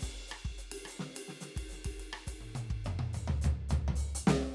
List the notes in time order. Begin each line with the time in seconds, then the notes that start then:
0.01 kick, hi-hat pedal, ride
0.28 cross-stick, hi-hat pedal
0.45 kick
0.50 snare
0.59 hi-hat pedal
0.72 ride
0.86 cross-stick, hi-hat pedal
1.00 snare
1.15 hi-hat pedal, ride
1.29 snare
1.41 snare, hi-hat pedal, ride
1.57 kick, ride
1.70 snare, hi-hat pedal
1.85 kick, ride
2.00 hi-hat pedal, ride
2.13 cross-stick
2.27 kick, hi-hat pedal, ride
2.41 high tom
2.56 hi-hat pedal, high tom
2.71 kick
2.85 hi-hat pedal, mid tom
3.00 open hi-hat, high tom
3.14 floor tom, hi-hat pedal
3.28 floor tom
3.42 floor tom, hi-hat pedal
3.70 floor tom, hi-hat pedal
3.88 floor tom
3.96 hi-hat pedal
4.15 open hi-hat
4.28 snare